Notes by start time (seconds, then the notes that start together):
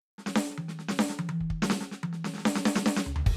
0.18 snare
0.26 snare
0.36 snare
0.49 snare
0.58 high tom
0.68 snare, hi-hat pedal
0.79 snare
0.88 snare
0.99 snare
1.09 snare
1.19 high tom
1.41 kick
1.50 kick
1.62 snare
1.70 snare
1.81 snare
1.91 snare
2.03 high tom
2.13 snare
2.24 snare
2.34 snare
2.38 snare
2.42 snare
2.45 snare
2.56 snare
2.65 snare
2.75 snare
2.86 snare
2.96 snare
3.06 floor tom
3.16 floor tom
3.26 kick, ride